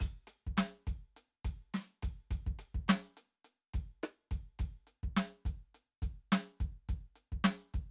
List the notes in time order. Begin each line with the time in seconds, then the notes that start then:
0.00 closed hi-hat, kick
0.27 closed hi-hat
0.47 kick
0.57 snare, closed hi-hat
0.87 kick, closed hi-hat
1.17 closed hi-hat
1.45 kick, closed hi-hat
1.74 snare, closed hi-hat
2.03 kick, closed hi-hat
2.30 kick, closed hi-hat
2.46 kick
2.59 closed hi-hat
2.74 kick
2.81 kick
2.88 snare, closed hi-hat
3.17 closed hi-hat
3.45 closed hi-hat
3.74 kick, closed hi-hat
4.03 cross-stick, closed hi-hat
4.31 kick, closed hi-hat
4.59 kick, closed hi-hat
4.87 closed hi-hat
5.03 kick
5.17 snare, closed hi-hat
5.45 kick, closed hi-hat
5.75 closed hi-hat
6.02 kick, closed hi-hat
6.32 snare, closed hi-hat
6.60 kick, closed hi-hat
6.89 kick, closed hi-hat
7.16 closed hi-hat
7.32 kick
7.44 snare, closed hi-hat
7.74 kick, closed hi-hat